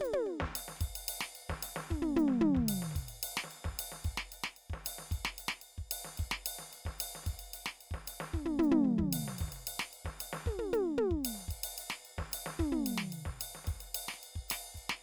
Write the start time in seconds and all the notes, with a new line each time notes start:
0.01 hi-hat pedal, high tom
0.14 high tom
0.26 high tom
0.41 kick, snare
0.47 kick
0.56 hi-hat pedal, ride bell
0.69 snare
0.77 snare
0.81 kick, ride
0.88 kick
0.96 ride
1.09 ride bell
1.13 hi-hat pedal
1.21 snare
1.36 ride
1.50 kick, snare
1.63 hi-hat pedal, ride
1.77 snare
1.90 kick, floor tom
1.98 kick
2.02 floor tom
2.16 hi-hat pedal, floor tom
2.29 snare
2.41 floor tom
2.55 kick, snare
2.69 hi-hat pedal, ride bell
2.83 snare
2.92 snare
2.96 kick, ride
3.02 kick
3.09 ride
3.23 hi-hat pedal, ride bell
3.37 snare
3.44 snare
3.51 ride
3.65 kick, snare
3.71 kick
3.79 hi-hat pedal, ride
3.92 snare
4.05 kick, ride
4.12 kick
4.18 snare
4.32 hi-hat pedal, ride
4.44 snare
4.57 ride
4.70 kick, snare
4.85 hi-hat pedal, ride
4.99 snare
5.12 kick, ride
5.18 kick
5.25 snare
5.39 hi-hat pedal, ride bell
5.49 snare
5.62 ride
5.78 kick
5.92 hi-hat pedal, ride bell
6.05 snare
6.18 kick, ride
6.26 kick
6.32 snare
6.46 hi-hat pedal, ride bell
6.59 snare
6.73 ride
6.86 kick, snare
6.99 hi-hat pedal, ride bell
7.16 snare
7.24 kick, snare, ride
7.33 kick
7.40 ride
7.54 hi-hat pedal, ride bell
7.66 snare
7.81 ride
7.92 kick, snare
8.07 hi-hat pedal, ride bell
8.21 snare
8.33 kick, floor tom
8.46 floor tom
8.59 floor tom
8.64 hi-hat pedal
8.71 floor tom
8.84 floor tom
8.98 kick, floor tom
9.13 hi-hat pedal, ride bell
9.28 snare
9.39 kick, snare, ride
9.47 kick, snare
9.53 snare, ride
9.68 hi-hat pedal, ride bell
9.80 snare
9.93 ride
10.05 kick, snare
10.20 hi-hat pedal, ride
10.33 snare
10.47 kick, mid tom
10.59 mid tom
10.73 hi-hat pedal, mid tom
10.98 mid tom
11.11 kick
11.24 hi-hat pedal, ride bell
11.35 snare
11.41 snare
11.49 kick, ride
11.64 ride
11.78 hi-hat pedal, ride bell
11.91 snare
12.06 ride
12.19 kick, snare
12.32 hi-hat pedal, ride bell
12.47 snare
12.59 kick, floor tom
12.66 kick
12.72 floor tom
12.87 hi-hat pedal, ride
12.98 snare
13.13 ride
13.26 kick, snare
13.41 hi-hat pedal, ride bell
13.55 snare
13.65 kick, snare, ride
13.71 kick, snare
13.76 snare
13.80 snare, ride
13.84 snare
13.95 hi-hat pedal, ride bell
14.09 snare
14.14 snare
14.24 ride
14.36 kick
14.49 snare, hi-hat pedal, ride bell
14.75 kick, ride
14.90 snare